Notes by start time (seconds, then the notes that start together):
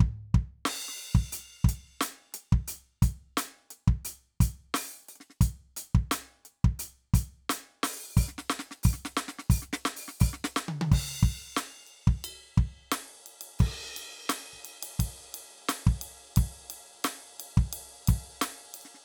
0.01 kick
0.35 kick
0.66 snare, crash
0.89 snare
0.96 open hi-hat
1.15 kick
1.33 closed hi-hat
1.65 kick
1.69 closed hi-hat
2.01 closed hi-hat, snare
2.33 snare, closed hi-hat
2.53 kick
2.68 closed hi-hat
3.03 closed hi-hat, kick
3.38 closed hi-hat, snare
3.71 closed hi-hat
3.88 kick
4.05 closed hi-hat
4.41 closed hi-hat, kick
4.75 open hi-hat, snare
5.09 hi-hat pedal, open hi-hat
5.16 closed hi-hat
5.21 snare
5.30 snare
5.41 closed hi-hat, kick
5.77 closed hi-hat
5.95 kick
6.12 closed hi-hat, snare
6.27 hi-hat pedal
6.46 closed hi-hat
6.65 kick
6.80 closed hi-hat
7.14 closed hi-hat, kick
7.50 closed hi-hat, snare
7.84 open hi-hat, snare
8.17 open hi-hat, kick
8.29 snare
8.50 snare
8.60 snare
8.72 snare
8.84 open hi-hat, kick
8.94 snare
9.06 snare
9.17 snare
9.29 snare
9.39 snare
9.50 open hi-hat, kick
9.63 snare
9.74 snare
9.86 snare
9.97 open hi-hat
10.09 snare
10.21 open hi-hat, kick
10.34 snare
10.45 snare
10.57 snare, hi-hat pedal
10.69 high tom
10.82 high tom
10.92 kick, crash
11.23 kick
11.57 snare, ride
11.87 ride
12.08 kick
12.25 ride bell
12.58 kick
12.92 snare, ride
13.27 ride
13.42 ride
13.60 kick, ride
13.97 ride
14.30 snare, ride
14.54 kick
14.65 ride
14.83 ride
15.00 kick, ride
15.35 ride
15.69 snare, ride
15.87 kick
16.02 ride
16.37 kick, ride
16.71 ride
17.05 snare, ride
17.40 ride
17.58 kick
17.73 ride
18.08 kick, ride
18.42 snare, ride
18.75 ride
18.82 snare, ride
18.95 snare